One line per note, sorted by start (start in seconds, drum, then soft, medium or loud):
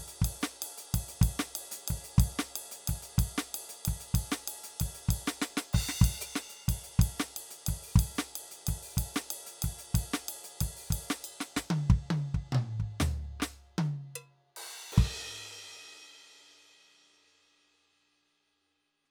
0.09 open hi-hat medium
0.22 kick medium
0.22 ride loud
0.42 snare loud
0.42 hi-hat pedal medium
0.63 ride loud
0.78 closed hi-hat medium
0.95 kick medium
0.95 ride loud
1.09 closed hi-hat medium
1.22 kick loud
1.22 ride loud
1.40 snare loud
1.40 hi-hat pedal medium
1.56 ride loud
1.72 closed hi-hat loud
1.89 kick medium
1.89 ride loud
2.05 closed hi-hat medium
2.19 kick loud
2.19 ride loud
2.40 snare loud
2.40 hi-hat pedal medium
2.56 ride loud
2.72 closed hi-hat medium
2.88 kick medium
2.88 ride loud
3.03 closed hi-hat medium
3.19 kick loud
3.19 ride loud
3.39 snare loud
3.39 hi-hat pedal medium
3.55 ride loud
3.70 closed hi-hat medium
3.86 kick medium
3.86 ride loud
4.01 closed hi-hat medium
4.15 kick medium
4.15 ride loud
4.32 snare loud
4.32 hi-hat pedal medium
4.48 ride loud
4.65 closed hi-hat medium
4.81 kick medium
4.81 ride loud
4.95 closed hi-hat medium
5.09 kick medium
5.09 ride loud
5.27 snare loud
5.27 hi-hat pedal medium
5.42 snare loud
5.58 snare loud
5.74 kick loud
5.74 crash loud
5.90 snare medium
6.02 kick loud
6.02 ride loud
6.22 open hi-hat loud
6.22 hi-hat pedal medium
6.36 snare loud
6.50 closed hi-hat medium
6.69 kick medium
6.69 ride loud
6.84 closed hi-hat medium
7.00 kick loud
7.00 ride loud
7.19 snare loud
7.19 hi-hat pedal medium
7.37 ride loud
7.51 closed hi-hat medium
7.67 kick medium
7.67 ride loud
7.84 open hi-hat medium
7.96 kick loud
7.96 ride loud
8.16 snare loud
8.16 hi-hat pedal medium
8.36 ride loud
8.52 closed hi-hat medium
8.68 kick medium
8.68 ride loud
8.83 open hi-hat medium
8.98 kick medium
8.98 ride loud
9.15 snare loud
9.15 hi-hat pedal medium
9.31 ride loud
9.47 closed hi-hat medium
9.63 kick medium
9.63 ride loud
9.80 open hi-hat medium
9.95 kick medium
9.95 ride loud
10.14 snare loud
10.14 hi-hat pedal medium
10.29 ride loud
10.45 closed hi-hat medium
10.61 kick medium
10.61 ride loud
10.77 open hi-hat medium
10.91 kick medium
10.91 ride loud
11.03 hi-hat pedal soft
11.11 snare loud
11.25 ride bell medium
11.41 snare loud
11.57 kick soft
11.57 snare loud
11.71 high tom loud
11.91 kick loud
12.11 high tom loud
12.35 kick medium
12.53 mid tom loud
12.55 mid tom loud
12.81 kick medium
13.01 snare loud
13.01 floor tom loud
13.41 cross-stick medium
13.41 snare loud
13.79 high tom loud
14.16 percussion loud
14.57 crash medium
14.93 ride loud
14.99 kick loud
15.22 mid tom soft
15.27 mid tom soft
19.06 snare soft